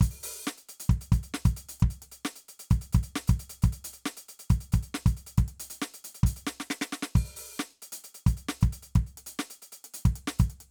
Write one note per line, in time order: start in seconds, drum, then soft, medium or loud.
0.01 closed hi-hat medium
0.01 kick loud
0.11 open hi-hat medium
0.23 open hi-hat loud
0.45 snare loud
0.45 hi-hat pedal soft
0.58 closed hi-hat medium
0.69 closed hi-hat medium
0.80 closed hi-hat loud
0.89 kick loud
0.89 closed hi-hat medium
1.01 closed hi-hat medium
1.12 closed hi-hat medium
1.12 kick loud
1.23 closed hi-hat medium
1.34 snare loud
1.45 closed hi-hat medium
1.45 kick loud
1.57 closed hi-hat medium
1.69 closed hi-hat medium
1.80 kick loud
1.80 closed hi-hat medium
1.90 closed hi-hat medium
2.02 closed hi-hat medium
2.12 closed hi-hat medium
2.25 snare loud
2.36 closed hi-hat medium
2.49 closed hi-hat medium
2.59 closed hi-hat medium
2.70 closed hi-hat medium
2.70 kick loud
2.81 closed hi-hat medium
2.93 closed hi-hat medium
2.93 kick loud
3.03 closed hi-hat medium
3.16 snare loud
3.28 closed hi-hat medium
3.28 kick loud
3.39 closed hi-hat medium
3.50 closed hi-hat medium
3.62 closed hi-hat medium
3.62 kick loud
3.72 closed hi-hat medium
3.84 closed hi-hat loud
3.93 closed hi-hat medium
4.06 snare loud
4.17 closed hi-hat medium
4.29 closed hi-hat medium
4.39 closed hi-hat medium
4.50 closed hi-hat medium
4.50 kick loud
4.61 closed hi-hat medium
4.72 closed hi-hat medium
4.72 kick loud
4.83 closed hi-hat soft
4.94 snare loud
5.06 closed hi-hat medium
5.06 kick loud
5.27 closed hi-hat medium
5.38 kick loud
5.38 closed hi-hat medium
5.48 closed hi-hat medium
5.60 closed hi-hat loud
5.70 closed hi-hat medium
5.82 snare loud
5.94 closed hi-hat medium
6.04 closed hi-hat medium
6.15 closed hi-hat medium
6.23 closed hi-hat loud
6.23 kick loud
6.36 closed hi-hat medium
6.47 snare loud
6.60 snare loud
6.70 snare loud
6.81 snare loud
6.92 snare loud
7.03 snare loud
7.15 open hi-hat medium
7.15 kick loud
7.24 open hi-hat medium
7.36 open hi-hat loud
7.47 open hi-hat soft
7.58 snare loud
7.58 hi-hat pedal soft
7.71 closed hi-hat soft
7.82 closed hi-hat medium
7.92 closed hi-hat loud
8.04 closed hi-hat medium
8.15 closed hi-hat medium
8.26 closed hi-hat medium
8.26 kick loud
8.37 closed hi-hat medium
8.49 snare loud
8.61 closed hi-hat medium
8.61 kick loud
8.73 closed hi-hat medium
8.95 kick loud
8.95 closed hi-hat medium
9.07 closed hi-hat soft
9.17 closed hi-hat medium
9.26 closed hi-hat medium
9.39 snare loud
9.50 closed hi-hat medium
9.62 closed hi-hat medium
9.72 closed hi-hat medium
9.84 closed hi-hat medium
9.94 closed hi-hat loud
10.05 kick loud
10.05 closed hi-hat medium
10.16 closed hi-hat medium
10.27 snare loud
10.39 closed hi-hat medium
10.39 kick loud
10.50 closed hi-hat medium
10.60 closed hi-hat medium